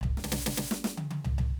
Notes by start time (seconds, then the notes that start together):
0.03 kick, floor tom
0.17 snare
0.24 snare
0.32 snare
0.42 kick, snare
0.57 snare
0.71 snare
0.84 snare
0.97 high tom
1.11 high tom
1.24 floor tom
1.38 floor tom
1.50 kick